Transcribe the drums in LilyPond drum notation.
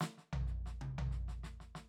\new DrumStaff \drummode { \time 4/4 \tempo 4 = 125 \tuplet 3/2 { <hhp sn>8 sn8 tomfh8 sn8 sn8 tommh8 tomfh8 sn8 sn8 sn8 sn8 sn8 } | }